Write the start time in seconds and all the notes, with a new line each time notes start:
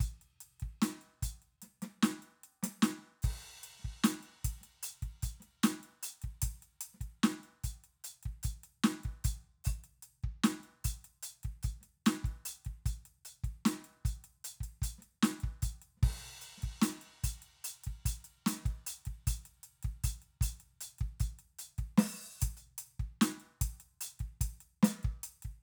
0.01 closed hi-hat, kick
0.22 closed hi-hat
0.41 closed hi-hat
0.60 kick, closed hi-hat
0.82 closed hi-hat, snare
1.02 closed hi-hat
1.23 closed hi-hat, kick
1.42 closed hi-hat
1.62 snare, closed hi-hat
1.83 snare, closed hi-hat
2.03 closed hi-hat, snare
2.23 closed hi-hat
2.44 closed hi-hat
2.63 snare, closed hi-hat
2.83 closed hi-hat, snare
3.23 kick, hi-hat pedal, crash
3.43 closed hi-hat
3.64 closed hi-hat
3.80 snare
3.85 kick
4.04 closed hi-hat, snare
4.23 closed hi-hat
4.45 kick, closed hi-hat
4.61 snare, closed hi-hat
4.83 closed hi-hat
5.03 kick, closed hi-hat
5.23 closed hi-hat, kick
5.40 snare, closed hi-hat
5.64 closed hi-hat, snare
5.83 closed hi-hat
6.03 closed hi-hat
6.22 kick, closed hi-hat
6.42 kick, closed hi-hat
6.63 closed hi-hat
6.81 closed hi-hat
6.94 snare
7.01 kick, closed hi-hat
7.24 closed hi-hat, snare
7.44 closed hi-hat
7.64 closed hi-hat, kick
7.84 closed hi-hat
8.04 closed hi-hat
8.23 kick, closed hi-hat
8.44 closed hi-hat, kick
8.64 closed hi-hat
8.84 closed hi-hat, snare
9.04 kick, closed hi-hat
9.25 closed hi-hat, kick
9.65 open hi-hat, kick, hi-hat pedal
9.84 closed hi-hat
10.03 closed hi-hat
10.23 kick, closed hi-hat
10.33 kick
10.44 closed hi-hat, snare
10.64 closed hi-hat
10.85 closed hi-hat, kick
11.05 closed hi-hat
11.23 closed hi-hat
11.44 kick, closed hi-hat
11.63 closed hi-hat, kick, snare
11.81 snare, closed hi-hat
12.06 closed hi-hat, snare
12.25 kick, closed hi-hat
12.46 closed hi-hat
12.65 kick, closed hi-hat
12.86 closed hi-hat, kick
13.06 closed hi-hat
13.26 closed hi-hat
13.44 kick, closed hi-hat
13.66 closed hi-hat, snare
13.85 closed hi-hat
14.06 closed hi-hat, kick
14.25 closed hi-hat
14.45 closed hi-hat
14.61 kick, closed hi-hat
14.82 closed hi-hat, kick
14.99 snare
15.03 closed hi-hat
15.23 closed hi-hat, snare
15.41 kick, closed hi-hat
15.63 closed hi-hat, kick
15.82 closed hi-hat
15.97 snare
16.03 kick, crash
16.20 closed hi-hat
16.42 closed hi-hat
16.58 snare
16.63 kick, closed hi-hat
16.82 closed hi-hat, snare
17.02 closed hi-hat
17.24 closed hi-hat, kick
17.43 closed hi-hat
17.65 closed hi-hat
17.84 kick, closed hi-hat
18.06 closed hi-hat, kick
18.25 closed hi-hat
18.47 closed hi-hat, snare
18.66 kick, closed hi-hat
18.87 closed hi-hat
19.06 kick, closed hi-hat
19.28 closed hi-hat, kick
19.46 closed hi-hat
19.64 closed hi-hat
19.83 kick, closed hi-hat
20.04 closed hi-hat, kick
20.22 closed hi-hat
20.42 closed hi-hat, kick
20.61 closed hi-hat
20.81 closed hi-hat
20.99 kick, closed hi-hat
21.20 closed hi-hat, kick
21.39 closed hi-hat
21.59 closed hi-hat
21.79 kick, closed hi-hat
21.98 open hi-hat, snare
22.41 kick, closed hi-hat, hi-hat pedal
22.57 closed hi-hat
22.79 closed hi-hat
23.00 kick, closed hi-hat
23.22 closed hi-hat, snare
23.40 closed hi-hat
23.62 kick, closed hi-hat
23.81 closed hi-hat
24.01 closed hi-hat
24.20 kick, closed hi-hat
24.41 kick, closed hi-hat
24.61 closed hi-hat
24.83 closed hi-hat, snare
25.04 kick, closed hi-hat
25.24 closed hi-hat
25.43 kick, closed hi-hat